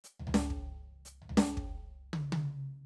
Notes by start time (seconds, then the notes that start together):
0.04 hi-hat pedal
0.19 floor tom
0.27 floor tom
0.34 snare
0.50 kick
1.05 hi-hat pedal
1.22 floor tom
1.29 floor tom
1.37 snare
1.57 kick
2.13 high tom
2.32 high tom